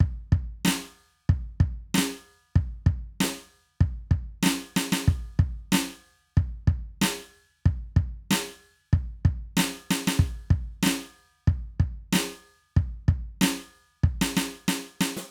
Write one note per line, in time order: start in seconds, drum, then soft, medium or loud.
0.01 kick loud
0.33 kick loud
0.65 snare loud
0.68 snare loud
1.30 kick loud
1.61 kick loud
1.95 snare loud
1.99 snare loud
2.56 kick loud
2.87 kick loud
3.21 snare loud
3.24 snare loud
3.81 kick loud
4.12 kick loud
4.43 snare loud
4.47 snare loud
4.77 snare loud
4.93 snare loud
5.08 kick loud
5.40 kick loud
5.73 snare loud
5.75 snare loud
6.38 kick loud
6.68 kick loud
7.02 snare loud
7.04 snare loud
7.66 kick loud
7.97 kick loud
8.31 snare loud
8.33 snare loud
8.93 kick loud
9.26 kick loud
9.57 snare loud
9.60 snare loud
9.91 snare loud
10.08 snare loud
10.20 kick loud
10.51 kick loud
10.83 snare loud
10.87 snare loud
11.48 kick loud
11.80 kick loud
12.13 snare loud
12.16 snare loud
12.77 kick loud
13.09 kick loud
13.42 snare loud
13.44 snare loud
14.04 kick loud
14.22 snare loud
14.37 snare loud
14.69 snare loud
15.01 snare loud
15.17 snare loud